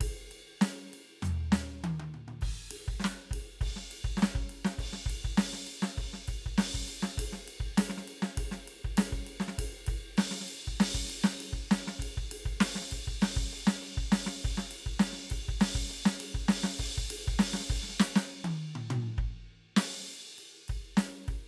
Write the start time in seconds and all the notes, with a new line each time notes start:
0.01 kick, ride
0.29 hi-hat pedal, ride
0.58 snare, hi-hat pedal
0.63 ride
0.88 hi-hat pedal
0.94 ride
1.08 snare
1.11 snare
1.16 snare
1.23 floor tom, hi-hat pedal
1.53 snare
1.84 high tom
2.00 high tom
2.14 mid tom
2.28 mid tom
2.42 kick, crash
2.71 ride
2.88 kick
3.00 snare
3.05 snare
3.31 kick, ride
3.61 kick, ride
3.77 snare
3.92 ride
4.05 kick
4.17 snare
4.23 snare
4.36 kick
4.50 ride
4.65 snare
4.79 kick, ride
4.93 snare
5.06 kick
5.10 ride
5.25 kick
5.38 snare, ride
5.53 snare
5.67 ride
5.83 snare
5.98 kick, ride
6.14 snare
6.28 kick, ride
6.46 kick
6.58 snare, ride
6.75 kick
6.89 ride
7.03 snare
7.18 kick, ride
7.33 snare
7.48 ride
7.61 kick
7.78 snare, ride
7.90 snare
7.98 snare
8.08 ride
8.23 snare
8.38 kick, ride
8.52 snare
8.68 ride
8.85 kick
8.98 snare, ride
9.13 kick
9.27 ride
9.40 snare
9.48 snare
9.59 kick, ride
9.87 kick, ride
10.18 snare, ride
10.31 snare
10.41 snare
10.49 ride
10.68 kick
10.80 snare, ride
10.95 kick
11.10 ride
11.24 snare
11.41 ride
11.53 kick
11.71 snare, ride
11.88 snare
12.00 kick, ride
12.18 kick
12.32 ride
12.46 kick
12.61 snare, ride
12.76 snare
12.82 snare
12.92 kick, ride
13.08 kick
13.22 snare, ride
13.37 kick
13.52 ride
13.67 snare
13.82 ride
13.98 kick
14.12 snare, ride
14.27 snare
14.44 kick, ride
14.58 snare
14.71 ride
14.87 kick
15.00 snare, ride
15.13 snare
15.20 snare
15.31 kick, ride
15.49 kick
15.61 snare, ride
15.75 kick
15.90 ride
16.06 snare
16.21 ride
16.35 kick
16.49 snare, ride
16.64 snare
16.79 kick, ride
16.98 kick
17.11 ride
17.28 kick
17.39 snare, ride
17.54 snare
17.61 snare
17.70 kick, ride
17.84 snare
17.90 snare
18.00 snare, hi-hat pedal
18.16 snare
18.45 high tom
18.76 mid tom
18.91 mid tom
19.18 kick
19.77 snare, ride
20.09 ride
20.39 ride
20.69 kick, ride
20.98 snare, ride
21.28 kick, ride